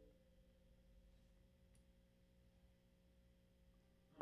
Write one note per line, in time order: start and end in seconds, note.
4.20 4.21 D#3